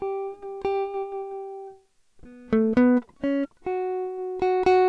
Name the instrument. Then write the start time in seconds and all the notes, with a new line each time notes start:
acoustic guitar
0.01 G4
0.66 G4
2.54 A3
2.78 B3
3.25 C#4
3.68 F#4
4.43 F#4
4.68 F#4